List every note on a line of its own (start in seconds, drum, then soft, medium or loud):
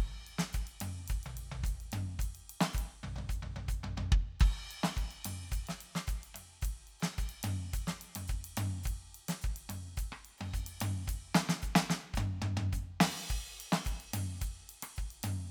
0.27 ride soft
0.39 snare loud
0.53 kick medium
0.53 hi-hat pedal medium
0.53 ride medium
0.67 ride soft
0.81 high tom loud
0.81 ride medium
1.08 kick medium
1.08 hi-hat pedal medium
1.08 ride medium
1.23 floor tom medium
1.23 ride soft
1.37 ride medium
1.52 floor tom loud
1.64 kick medium
1.64 hi-hat pedal medium
1.64 ride medium
1.81 ride soft
1.92 high tom loud
1.92 ride medium
2.19 kick medium
2.19 hi-hat pedal medium
2.19 ride medium
2.35 ride soft
2.50 ride medium
2.61 snare loud
2.74 kick medium
2.74 hi-hat pedal medium
2.78 ride medium
3.04 floor tom medium
3.04 high tom medium
3.16 floor tom medium
3.16 high tom medium
3.30 kick medium
3.30 hi-hat pedal medium
3.43 floor tom medium
3.43 high tom medium
3.56 floor tom medium
3.56 high tom medium
3.69 kick medium
3.69 hi-hat pedal medium
3.84 floor tom medium
3.84 high tom medium
3.98 floor tom medium
3.98 high tom loud
4.12 kick loud
4.40 kick loud
4.40 ride medium
4.71 ride medium
4.84 snare medium
4.95 kick medium
4.95 hi-hat pedal soft
4.95 ride soft
5.11 ride soft
5.25 high tom loud
5.25 ride loud
5.52 kick medium
5.52 hi-hat pedal medium
5.52 ride medium
5.67 snare medium
5.67 ride soft
5.81 ride medium
5.96 snare medium
6.07 kick medium
6.07 hi-hat pedal medium
6.07 ride medium
6.24 ride soft
6.35 high tom soft
6.35 ride medium
6.62 kick medium
6.62 hi-hat pedal medium
6.62 ride medium
6.88 ride soft
7.00 snare loud
7.00 ride medium
7.18 kick medium
7.18 hi-hat pedal medium
7.30 ride medium
7.44 high tom loud
7.44 ride medium
7.74 kick medium
7.74 hi-hat pedal medium
7.74 ride medium
7.88 snare loud
8.02 ride medium
8.16 high tom medium
8.16 ride medium
8.28 kick medium
8.28 hi-hat pedal medium
8.45 ride medium
8.57 high tom loud
8.57 ride medium
8.84 kick medium
8.84 hi-hat pedal medium
8.84 ride medium
9.15 ride medium
9.29 snare loud
9.29 ride medium
9.42 kick medium
9.42 hi-hat pedal medium
9.56 ride medium
9.70 high tom medium
9.70 ride medium
9.97 kick medium
9.97 hi-hat pedal medium
9.97 ride medium
10.13 cross-stick medium
10.25 ride soft
10.38 high tom loud
10.38 ride soft
10.54 kick medium
10.54 hi-hat pedal medium
10.67 ride medium
10.81 high tom loud
10.81 ride medium
11.08 kick medium
11.08 hi-hat pedal medium
11.08 ride medium
11.35 snare loud
11.49 snare loud
11.62 kick medium
11.62 hi-hat pedal medium
11.76 snare loud
11.90 snare loud
12.14 kick medium
12.14 hi-hat pedal medium
12.14 high tom loud
12.42 high tom loud
12.57 high tom loud
12.73 kick medium
12.73 hi-hat pedal medium
13.01 snare loud
13.01 crash loud
13.29 kick medium
13.29 hi-hat pedal medium
13.29 ride medium
13.61 hi-hat pedal soft
13.61 ride medium
13.73 snare loud
13.85 kick medium
13.85 hi-hat pedal medium
13.85 ride medium
14.00 ride soft
14.14 high tom loud
14.14 ride loud
14.41 kick medium
14.41 hi-hat pedal medium
14.41 ride medium
14.70 ride medium
14.83 cross-stick medium
14.83 ride medium
14.97 kick medium
14.97 hi-hat pedal medium
15.11 ride soft
15.23 high tom loud
15.23 ride medium